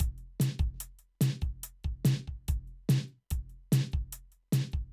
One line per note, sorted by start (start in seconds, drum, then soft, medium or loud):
0.00 closed hi-hat loud
0.00 kick medium
0.18 closed hi-hat soft
0.40 closed hi-hat loud
0.40 snare loud
0.59 closed hi-hat soft
0.59 kick medium
0.74 snare soft
0.80 closed hi-hat loud
0.99 closed hi-hat soft
1.21 closed hi-hat loud
1.21 snare loud
1.41 kick medium
1.41 closed hi-hat soft
1.63 closed hi-hat loud
1.84 kick soft
1.84 closed hi-hat soft
2.05 closed hi-hat loud
2.05 snare loud
2.27 kick soft
2.48 closed hi-hat medium
2.48 kick medium
2.67 closed hi-hat soft
2.89 closed hi-hat loud
2.89 snare loud
3.08 closed hi-hat soft
3.30 closed hi-hat loud
3.30 kick medium
3.49 closed hi-hat soft
3.72 closed hi-hat loud
3.72 snare loud
3.92 kick medium
3.92 closed hi-hat soft
4.12 closed hi-hat loud
4.32 closed hi-hat soft
4.52 closed hi-hat loud
4.52 snare loud
4.72 kick medium
4.72 closed hi-hat soft